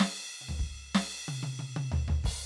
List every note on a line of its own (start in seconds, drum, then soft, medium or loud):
0.00 snare loud
0.00 crash loud
0.41 high tom soft
0.48 floor tom loud
0.59 kick medium
0.95 snare loud
0.95 crash loud
1.28 high tom loud
1.43 high tom loud
1.59 high tom medium
1.76 high tom loud
1.92 floor tom loud
2.08 floor tom loud
2.24 kick medium
2.24 crash loud